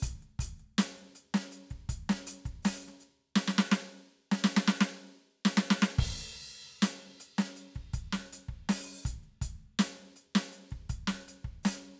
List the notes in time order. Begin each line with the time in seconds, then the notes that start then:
0.01 closed hi-hat, kick, hi-hat pedal
0.22 closed hi-hat
0.39 closed hi-hat, kick
0.59 closed hi-hat
0.78 closed hi-hat, snare
0.98 closed hi-hat
1.15 closed hi-hat
1.34 snare, closed hi-hat
1.52 closed hi-hat
1.70 kick, closed hi-hat
1.89 closed hi-hat, kick
2.09 snare, closed hi-hat
2.27 closed hi-hat
2.45 kick, closed hi-hat
2.62 open hi-hat, snare, hi-hat pedal
2.87 snare
3.00 hi-hat pedal
3.35 snare
3.48 snare
3.58 snare
3.71 snare
4.31 snare
4.44 snare
4.56 snare
4.67 snare
4.80 snare
5.45 snare
5.57 snare
5.70 snare
5.82 snare
5.98 kick, crash
6.36 crash
6.82 closed hi-hat, snare
7.02 closed hi-hat
7.20 closed hi-hat
7.38 snare, closed hi-hat
7.56 closed hi-hat
7.75 kick, closed hi-hat
7.93 closed hi-hat, kick
8.12 snare
8.33 closed hi-hat
8.48 kick
8.69 open hi-hat, snare
9.03 closed hi-hat, kick, hi-hat pedal
9.23 closed hi-hat
9.41 closed hi-hat, kick
9.79 closed hi-hat, snare
9.98 closed hi-hat
10.16 closed hi-hat
10.35 snare, closed hi-hat
10.52 closed hi-hat
10.71 kick, closed hi-hat
10.89 closed hi-hat, kick
11.07 snare
11.28 closed hi-hat
11.44 kick
11.63 open hi-hat, snare, hi-hat pedal